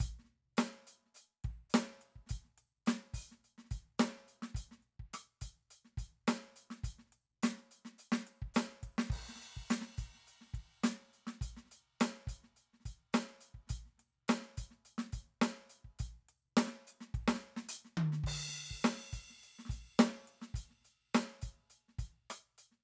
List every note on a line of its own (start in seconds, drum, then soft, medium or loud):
0.00 closed hi-hat medium
0.00 kick medium
0.05 kick soft
0.09 kick soft
0.19 snare soft
0.24 snare soft
0.57 closed hi-hat medium
0.57 snare medium
0.87 closed hi-hat soft
1.05 snare soft
1.14 closed hi-hat soft
1.14 hi-hat pedal soft
1.44 kick soft
1.44 closed hi-hat soft
1.50 kick soft
1.70 hi-hat pedal soft
1.74 closed hi-hat medium
1.74 snare loud
2.01 closed hi-hat soft
2.15 kick soft
2.26 closed hi-hat medium
2.26 snare soft
2.30 kick soft
2.44 snare soft
2.58 closed hi-hat soft
2.86 closed hi-hat medium
2.86 snare loud
3.14 open hi-hat medium
3.14 kick soft
3.31 snare soft
3.44 closed hi-hat soft
3.58 snare soft
3.64 snare soft
3.71 closed hi-hat medium
3.71 kick soft
3.98 closed hi-hat medium
3.98 snare loud
3.98 hi-hat pedal soft
4.15 snare soft
4.28 closed hi-hat soft
4.42 snare soft
4.54 closed hi-hat medium
4.54 kick soft
4.71 snare soft
4.79 snare soft
4.79 closed hi-hat soft
4.99 kick soft
5.13 closed hi-hat medium
5.13 cross-stick medium
5.41 closed hi-hat medium
5.41 kick soft
5.70 closed hi-hat soft
5.84 snare soft
5.97 closed hi-hat medium
5.97 kick soft
6.27 closed hi-hat medium
6.27 snare medium
6.56 closed hi-hat soft
6.70 snare soft
6.83 closed hi-hat medium
6.83 kick soft
6.98 snare soft
7.05 snare soft
7.12 closed hi-hat soft
7.43 closed hi-hat medium
7.43 snare loud
7.57 snare soft
7.71 closed hi-hat soft
7.85 snare soft
7.98 closed hi-hat soft
7.98 hi-hat pedal soft
8.12 snare medium
8.27 closed hi-hat soft
8.42 kick soft
8.54 closed hi-hat medium
8.54 snare medium
8.54 hi-hat pedal medium
8.69 snare soft
8.83 kick soft
8.83 closed hi-hat soft
8.98 snare medium
9.10 kick soft
9.10 crash medium
9.16 kick soft
9.19 kick soft
9.28 snare soft
9.35 snare soft
9.41 closed hi-hat medium
9.56 kick soft
9.70 closed hi-hat loud
9.70 snare medium
9.81 snare soft
9.98 closed hi-hat medium
9.98 kick soft
10.05 kick soft
10.14 snare soft
10.27 closed hi-hat soft
10.41 snare soft
10.46 snare soft
10.54 kick soft
10.54 closed hi-hat soft
10.83 closed hi-hat loud
10.83 snare loud
11.13 closed hi-hat soft
11.27 snare soft
11.41 closed hi-hat medium
11.41 kick soft
11.56 snare soft
11.65 snare soft
11.71 closed hi-hat soft
12.00 closed hi-hat loud
12.00 snare medium
12.27 closed hi-hat medium
12.27 kick soft
12.43 snare soft
12.56 closed hi-hat soft
12.73 snare soft
12.80 snare soft
12.85 closed hi-hat medium
12.85 kick soft
13.13 closed hi-hat medium
13.13 snare medium
13.13 hi-hat pedal soft
13.27 snare soft
13.40 closed hi-hat soft
13.54 kick soft
13.67 closed hi-hat medium
13.67 kick soft
13.67 snare soft
13.85 snare soft
13.98 snare soft
13.98 closed hi-hat soft
14.00 snare soft
14.28 closed hi-hat medium
14.28 snare loud
14.41 snare soft
14.57 closed hi-hat medium
14.57 kick soft
14.70 snare soft
14.85 closed hi-hat soft
14.98 snare medium
15.12 closed hi-hat medium
15.12 kick soft
15.41 closed hi-hat medium
15.41 snare loud
15.54 snare soft
15.69 closed hi-hat soft
15.84 kick soft
15.84 snare soft
15.99 closed hi-hat medium
15.99 kick soft
16.28 closed hi-hat soft
16.57 closed hi-hat medium
16.57 snare loud
16.67 snare soft
16.87 open hi-hat medium
16.87 hi-hat pedal medium
17.00 snare soft
17.14 kick soft
17.14 closed hi-hat soft
17.20 kick soft
17.23 kick soft
17.28 snare loud
17.34 snare soft
17.41 closed hi-hat soft
17.56 snare medium
17.69 closed hi-hat loud
17.85 snare soft
17.97 high tom loud
18.12 snare soft
18.24 kick soft
18.24 crash loud
18.29 kick soft
18.32 kick soft
18.48 snare soft
18.55 closed hi-hat soft
18.71 kick soft
18.84 open hi-hat medium
18.84 snare loud
18.97 snare soft
19.13 closed hi-hat medium
19.13 kick soft
19.30 snare soft
19.43 closed hi-hat soft
19.59 snare soft
19.65 snare soft
19.69 closed hi-hat soft
19.69 kick soft
19.99 open hi-hat medium
19.99 snare loud
20.27 closed hi-hat soft
20.41 snare soft
20.54 closed hi-hat medium
20.54 kick soft
20.70 snare soft
20.80 closed hi-hat soft
20.80 snare soft
21.14 closed hi-hat medium
21.14 snare loud
21.41 closed hi-hat medium
21.41 kick soft
21.70 closed hi-hat soft
21.88 snare soft
21.92 snare soft
21.98 closed hi-hat medium
21.98 kick soft
21.98 snare soft
22.30 closed hi-hat medium
22.30 cross-stick medium
22.58 closed hi-hat soft
22.71 snare soft